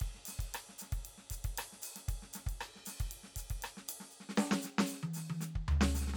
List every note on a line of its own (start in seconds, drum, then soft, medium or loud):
0.01 kick medium
0.01 ride medium
0.15 snare soft
0.26 snare soft
0.26 hi-hat pedal medium
0.26 ride medium
0.39 kick soft
0.39 ride medium
0.55 cross-stick medium
0.55 ride medium
0.69 snare soft
0.79 snare soft
0.79 hi-hat pedal medium
0.79 ride medium
0.93 kick medium
0.93 ride medium
1.05 ride medium
1.18 snare soft
1.31 kick soft
1.31 hi-hat pedal medium
1.31 ride medium
1.45 kick soft
1.45 ride medium
1.58 cross-stick medium
1.58 ride loud
1.73 snare soft
1.82 hi-hat pedal medium
1.82 ride medium
1.96 snare soft
1.96 ride medium
2.09 kick medium
2.09 ride medium
2.23 snare soft
2.34 snare soft
2.34 hi-hat pedal medium
2.34 ride medium
2.47 kick soft
2.47 ride medium
2.61 cross-stick medium
2.61 ride medium
2.76 snare soft
2.86 snare soft
2.86 hi-hat pedal medium
2.86 ride medium
3.00 kick medium
3.00 ride medium
3.12 ride medium
3.24 snare soft
3.37 kick soft
3.37 hi-hat pedal medium
3.37 ride medium
3.50 kick soft
3.50 ride medium
3.63 cross-stick medium
3.63 ride medium
3.77 snare soft
3.89 hi-hat pedal medium
3.89 ride loud
4.01 snare soft
4.11 hi-hat pedal soft
4.21 snare soft
4.29 snare soft
4.36 snare medium
4.36 hi-hat pedal soft
4.52 snare loud
4.62 snare soft
4.62 hi-hat pedal medium
4.79 snare loud
4.87 hi-hat pedal medium
4.93 snare soft
5.03 high tom medium
5.14 snare soft
5.14 hi-hat pedal medium
5.30 high tom medium
5.41 snare soft
5.41 hi-hat pedal medium
5.56 kick soft
5.69 floor tom loud
5.69 hi-hat pedal soft
5.81 snare loud
5.95 snare soft
5.95 hi-hat pedal medium
6.01 snare soft
6.08 snare soft
6.14 snare soft